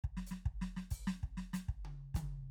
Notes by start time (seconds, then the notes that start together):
0.04 kick
0.17 snare
0.27 hi-hat pedal
0.31 snare
0.46 kick
0.62 snare
0.77 snare
0.91 kick, hi-hat pedal
1.07 snare
1.23 kick
1.37 snare
1.53 snare, hi-hat pedal
1.69 kick
1.85 high tom
2.14 kick, hi-hat pedal, high tom